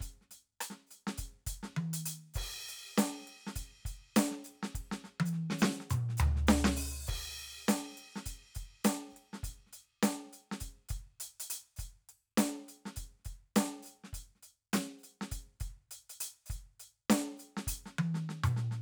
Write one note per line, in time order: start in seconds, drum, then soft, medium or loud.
0.01 closed hi-hat medium
0.01 kick soft
0.22 snare soft
0.31 closed hi-hat medium
0.31 snare soft
0.61 closed hi-hat loud
0.61 cross-stick medium
0.71 snare soft
0.87 closed hi-hat soft
0.87 hi-hat pedal soft
1.07 snare medium
1.18 closed hi-hat medium
1.18 kick soft
1.47 closed hi-hat loud
1.47 kick soft
1.56 kick soft
1.63 snare medium
1.77 high tom loud
1.94 closed hi-hat loud
2.06 open hi-hat loud
2.34 kick medium
2.34 hi-hat pedal medium
2.34 crash loud
2.43 kick soft
2.46 kick soft
2.69 closed hi-hat medium
2.98 closed hi-hat loud
2.98 snare loud
3.28 closed hi-hat soft
3.47 snare medium
3.56 closed hi-hat medium
3.56 kick soft
3.62 kick soft
3.83 closed hi-hat medium
3.83 kick soft
3.83 snare soft
3.92 kick soft
3.94 kick soft
4.16 closed hi-hat loud
4.16 snare loud
4.31 snare soft
4.45 closed hi-hat soft
4.45 hi-hat pedal medium
4.63 snare medium
4.75 kick soft
4.75 closed hi-hat medium
4.81 kick soft
4.92 snare medium
5.04 snare soft
5.20 high tom loud
5.26 hi-hat pedal medium
5.33 snare soft
5.50 snare medium
5.59 snare loud
5.59 hi-hat pedal medium
5.81 snare soft
5.90 hi-hat pedal loud
5.90 mid tom loud
6.09 snare soft
6.18 hi-hat pedal loud
6.18 floor tom loud
6.36 snare soft
6.47 kick soft
6.47 snare loud
6.47 hi-hat pedal loud
6.65 snare loud
6.77 open hi-hat loud
7.07 kick medium
7.07 hi-hat pedal medium
7.07 crash loud
7.16 kick soft
7.40 closed hi-hat soft
7.69 closed hi-hat loud
7.69 snare loud
7.98 closed hi-hat medium
8.16 snare medium
8.26 closed hi-hat medium
8.26 kick soft
8.55 closed hi-hat medium
8.55 kick soft
8.85 closed hi-hat loud
8.85 snare loud
9.10 kick soft
9.10 hi-hat pedal soft
9.17 closed hi-hat soft
9.34 snare soft
9.44 closed hi-hat medium
9.44 kick soft
9.49 kick soft
9.52 kick soft
9.67 snare soft
9.73 closed hi-hat medium
9.73 snare soft
10.03 closed hi-hat loud
10.03 snare loud
10.33 closed hi-hat soft
10.52 snare medium
10.61 closed hi-hat medium
10.61 kick soft
10.89 closed hi-hat medium
10.89 kick soft
10.97 kick soft
11.00 kick soft
11.20 closed hi-hat loud
11.40 closed hi-hat loud
11.50 closed hi-hat loud
11.77 closed hi-hat medium
11.77 kick soft
11.77 hi-hat pedal medium
12.09 closed hi-hat medium
12.38 closed hi-hat loud
12.38 snare loud
12.69 closed hi-hat soft
12.86 snare soft
12.97 closed hi-hat medium
12.97 kick soft
13.19 snare soft
13.25 closed hi-hat medium
13.25 kick soft
13.56 closed hi-hat loud
13.56 snare loud
13.68 snare soft
13.83 closed hi-hat soft
13.83 hi-hat pedal medium
14.04 snare soft
14.13 closed hi-hat medium
14.13 kick soft
14.36 snare soft
14.43 closed hi-hat soft
14.74 closed hi-hat loud
14.74 snare loud
14.99 hi-hat pedal soft
15.04 closed hi-hat medium
15.22 snare medium
15.32 closed hi-hat medium
15.32 kick soft
15.61 closed hi-hat medium
15.61 kick soft
15.71 kick soft
15.91 closed hi-hat medium
16.10 closed hi-hat medium
16.21 closed hi-hat loud
16.46 kick soft
16.46 hi-hat pedal medium
16.51 closed hi-hat medium
16.56 kick soft
16.59 kick soft
16.80 closed hi-hat medium
17.10 closed hi-hat loud
17.10 snare loud
17.37 closed hi-hat soft
17.37 hi-hat pedal soft
17.57 snare medium
17.68 closed hi-hat loud
17.68 kick soft
17.73 kick soft
17.86 snare soft
17.99 high tom loud
18.15 snare soft
18.30 snare soft
18.44 hi-hat pedal medium
18.44 mid tom loud
18.57 snare soft
18.72 snare soft